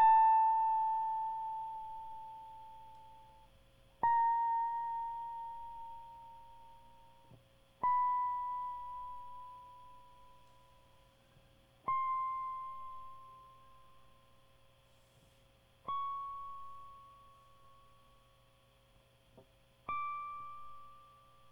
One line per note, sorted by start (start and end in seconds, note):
0.00 3.34 A5
4.04 7.17 A#5
7.84 8.91 B5
8.92 10.20 B5
11.89 13.76 C6
15.89 16.08 C#6
16.09 17.47 C#6
19.89 21.52 D6